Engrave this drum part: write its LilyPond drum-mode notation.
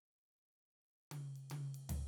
\new DrumStaff \drummode { \time 4/4 \tempo 4 = 110 r4 r4 <tommh cymr>8 cymr16 <cymr tommh>16 r16 cymr16 <tomfh cymr>8 | }